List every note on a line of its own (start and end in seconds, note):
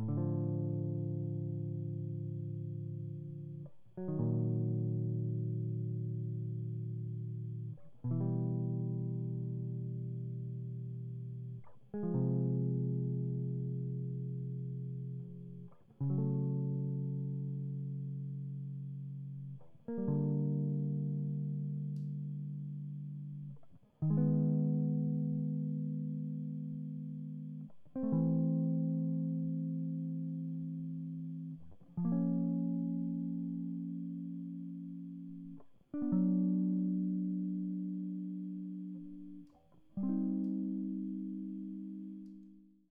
0.00 3.27 A2
0.09 3.69 D3
0.18 3.68 F3
3.98 7.74 F#3
4.09 7.78 D#3
4.20 7.75 A#2
8.06 11.61 B2
8.12 11.60 E3
8.21 11.63 G3
11.94 15.72 G#3
12.04 15.70 F3
12.15 15.65 C3
16.02 19.59 C#3
16.11 19.58 F#3
16.19 18.65 A3
19.89 23.55 A#3
19.98 23.54 G3
20.09 23.57 D3
24.03 27.69 D#3
24.11 27.70 G#3
24.18 27.69 B3
27.96 31.59 C4
28.04 31.29 A3
28.13 31.59 E3
31.98 35.58 F3
32.05 35.57 A#3
32.12 35.60 C#4
35.94 39.54 D4
36.02 38.83 B3
36.13 39.44 F#3
39.98 42.90 G3
40.04 42.85 C4
40.09 42.91 D#4